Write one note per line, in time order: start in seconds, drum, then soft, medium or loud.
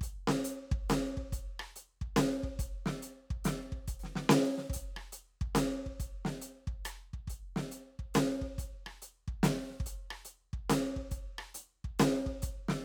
0.01 closed hi-hat medium
0.01 kick medium
0.28 snare medium
0.45 closed hi-hat loud
0.72 kick medium
0.90 closed hi-hat medium
0.90 snare medium
1.17 kick soft
1.33 closed hi-hat medium
1.33 kick medium
1.60 cross-stick medium
1.76 closed hi-hat medium
2.01 kick medium
2.16 closed hi-hat medium
2.16 snare loud
2.44 kick medium
2.59 closed hi-hat medium
2.59 kick medium
2.86 snare medium
3.03 closed hi-hat medium
3.31 kick medium
3.45 closed hi-hat medium
3.45 snare medium
3.72 kick soft
3.88 closed hi-hat medium
3.88 kick medium
3.99 hi-hat pedal soft
4.04 snare soft
4.16 snare medium
4.29 snare loud
4.43 open hi-hat soft
4.43 hi-hat pedal soft
4.58 snare soft
4.70 closed hi-hat medium
4.70 kick medium
4.76 kick soft
4.97 cross-stick medium
5.13 closed hi-hat medium
5.41 kick medium
5.55 closed hi-hat medium
5.55 snare loud
5.86 kick soft
6.00 closed hi-hat medium
6.00 kick medium
6.25 snare medium
6.42 closed hi-hat medium
6.67 kick medium
6.85 closed hi-hat medium
6.85 cross-stick medium
7.14 kick soft
7.28 closed hi-hat medium
7.28 kick soft
7.56 snare medium
7.72 closed hi-hat medium
7.99 kick soft
8.14 closed hi-hat medium
8.14 snare loud
8.42 kick soft
8.58 closed hi-hat medium
8.58 kick medium
8.86 cross-stick medium
9.02 closed hi-hat medium
9.28 kick medium
9.43 closed hi-hat medium
9.43 snare loud
9.70 snare soft
9.80 kick medium
9.86 closed hi-hat medium
10.11 cross-stick medium
10.25 closed hi-hat medium
10.53 kick medium
10.70 closed hi-hat loud
10.70 snare loud
10.96 kick soft
11.11 closed hi-hat medium
11.11 kick medium
11.39 cross-stick medium
11.55 closed hi-hat medium
11.84 kick soft
11.99 closed hi-hat medium
11.99 snare loud
12.26 kick medium
12.42 closed hi-hat medium
12.42 kick medium
12.69 snare medium